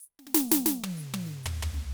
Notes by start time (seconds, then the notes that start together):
0.00 hi-hat pedal
0.19 snare
0.27 snare
0.34 snare
0.48 snare, hi-hat pedal
0.66 snare
0.84 high tom
0.97 snare, hi-hat pedal
1.14 high tom
1.26 snare
1.43 floor tom, hi-hat pedal
1.62 floor tom
1.74 snare